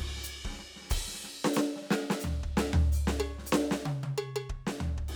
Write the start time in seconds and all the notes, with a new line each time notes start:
0.17 snare
0.24 hi-hat pedal
0.45 kick, snare
0.50 snare
0.53 snare
0.59 snare
0.76 snare
0.81 snare
0.84 snare
0.87 kick, snare, hi-hat pedal, crash
1.08 snare
1.14 snare
1.19 snare
1.24 snare
1.45 snare
1.53 snare, hi-hat pedal
1.76 snare
1.81 snare
1.86 snare
1.91 snare
2.10 snare
2.20 hi-hat pedal
2.24 floor tom
2.43 kick
2.57 snare
2.74 floor tom
2.92 hi-hat pedal
3.07 snare
3.20 percussion
3.39 snare
3.43 snare
3.46 snare, hi-hat pedal
3.53 snare
3.71 snare
3.86 high tom
4.03 high tom
4.18 percussion
4.36 percussion
4.50 kick
4.67 snare
4.81 floor tom
4.98 kick
5.09 ride